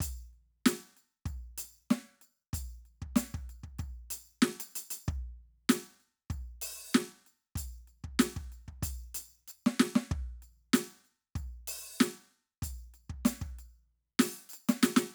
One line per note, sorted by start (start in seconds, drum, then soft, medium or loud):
0.01 kick medium
0.01 percussion loud
0.34 percussion soft
0.66 snare loud
0.66 percussion loud
0.98 percussion soft
1.26 kick medium
1.26 percussion soft
1.58 percussion loud
1.91 snare loud
1.91 percussion medium
2.22 percussion soft
2.54 kick medium
2.54 percussion loud
2.86 percussion soft
3.03 kick medium
3.17 snare loud
3.17 percussion loud
3.35 kick medium
3.50 percussion soft
3.64 kick soft
3.79 kick medium
3.79 percussion soft
4.11 percussion loud
4.43 snare loud
4.61 percussion loud
4.76 percussion loud
4.91 percussion loud
5.09 kick medium
5.70 snare loud
5.70 percussion loud
6.01 percussion soft
6.31 kick medium
6.31 percussion soft
6.62 percussion loud
6.94 snare loud
6.94 percussion medium
6.96 percussion soft
7.27 percussion soft
7.56 kick medium
7.56 percussion loud
7.88 percussion soft
8.05 kick medium
8.20 snare loud
8.20 percussion loud
8.37 kick medium
8.53 percussion soft
8.69 kick soft
8.83 kick medium
8.83 percussion loud
9.15 percussion loud
9.48 percussion medium
9.67 snare loud
9.80 snare loud
9.96 snare loud
10.12 kick medium
10.43 percussion soft
10.74 snare loud
10.74 percussion loud
11.06 percussion soft
11.36 kick medium
11.36 percussion soft
11.68 percussion loud
12.00 snare loud
12.00 percussion medium
12.02 percussion loud
12.63 kick medium
12.63 percussion loud
12.95 percussion soft
13.10 kick medium
13.26 snare loud
13.26 percussion loud
13.42 kick medium
13.59 percussion soft
14.20 snare loud
14.20 percussion loud
14.50 percussion medium
14.54 percussion medium
14.69 snare loud
14.69 percussion loud
14.83 snare loud
14.83 percussion loud
14.97 snare loud
14.97 percussion medium